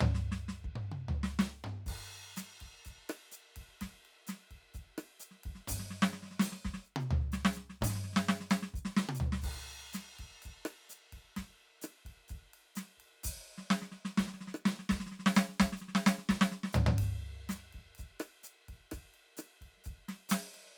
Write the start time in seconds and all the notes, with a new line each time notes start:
0.01 floor tom
0.15 snare
0.32 snare
0.49 snare
0.64 kick
0.72 kick
0.76 mid tom
0.92 high tom
1.09 floor tom
1.24 snare
1.39 snare
1.64 mid tom
1.86 kick, hi-hat pedal, crash
2.37 snare, hi-hat pedal, ride
2.61 kick, ride
2.67 kick
2.85 kick, hi-hat pedal, ride
2.92 kick
3.10 cross-stick, ride
3.32 hi-hat pedal
3.56 kick, ride
3.62 kick
3.81 kick, snare, hi-hat pedal, ride
3.87 kick
4.05 ride
4.27 snare, hi-hat pedal, ride
4.51 kick, ride
4.74 kick, hi-hat pedal, ride
4.98 cross-stick, ride
5.20 hi-hat pedal, ride
5.31 snare
5.44 kick, ride
5.52 kick, snare
5.68 kick, hi-hat pedal, mid tom
5.76 kick, snare
5.91 snare
6.02 snare
6.13 snare
6.23 snare
6.25 snare
6.31 snare
6.40 snare, hi-hat pedal
6.52 snare
6.65 kick, snare
6.74 snare
6.85 hi-hat pedal
6.96 hi-hat pedal, high tom
7.11 floor tom
7.21 snare
7.32 snare, hi-hat pedal
7.45 snare
7.53 snare, hi-hat pedal
7.70 snare
7.81 kick, hi-hat pedal, mid tom
7.90 kick, snare
7.95 snare
8.04 snare
8.13 snare
8.17 snare
8.29 snare
8.41 snare
8.50 snare, hi-hat pedal
8.63 snare
8.74 kick, hi-hat pedal
8.83 kick, snare
8.97 snare
9.09 high tom
9.15 hi-hat pedal
9.20 floor tom
9.33 snare
9.42 kick, hi-hat pedal, crash
9.50 kick
9.57 cross-stick
9.93 snare, hi-hat pedal, ride
10.19 kick, ride
10.25 kick
10.31 snare
10.42 kick, hi-hat pedal, ride
10.51 kick
10.65 cross-stick, ride
10.90 snare, hi-hat pedal
11.13 kick, ride
11.18 kick
11.37 kick, snare, hi-hat pedal, ride
11.43 kick
11.60 ride
11.82 cross-stick, hi-hat pedal, ride
12.05 kick, ride
12.11 kick
12.28 kick, hi-hat pedal, ride
12.54 ride
12.76 snare, hi-hat pedal, ride
12.98 kick, ride
13.24 kick, hi-hat pedal, ride
13.34 kick
13.58 snare
13.71 snare
13.82 snare
14.05 snare
14.18 kick, snare
14.28 snare
14.34 snare
14.41 snare
14.48 snare
14.53 cross-stick, snare
14.66 snare
14.79 snare
14.90 kick, snare
15.00 snare
15.06 snare, hi-hat pedal
15.12 snare
15.20 snare
15.26 snare
15.35 snare, hi-hat pedal
15.49 snare
15.60 kick, snare
15.73 snare
15.77 hi-hat pedal
15.82 snare
15.89 snare
15.94 snare
16.06 snare, hi-hat pedal
16.18 snare
16.29 kick, snare
16.35 kick
16.41 snare
16.52 snare
16.64 snare
16.73 hi-hat pedal, floor tom
16.87 floor tom
16.99 kick, hi-hat pedal, ride
17.49 snare, hi-hat pedal, ride
17.73 kick, ride
17.78 kick, snare
17.85 snare
17.95 hi-hat pedal, ride
17.99 kick
18.20 cross-stick, ride
18.44 hi-hat pedal, ride
18.69 kick, ride
18.74 kick
18.92 kick, cross-stick, hi-hat pedal, ride
18.99 kick
19.14 ride
19.37 cross-stick, hi-hat pedal, ride
19.61 kick, ride
19.77 snare
19.84 kick, hi-hat pedal, ride
20.09 snare, ride
20.29 snare, hi-hat pedal, ride
20.55 snare, ride
20.63 snare
20.66 snare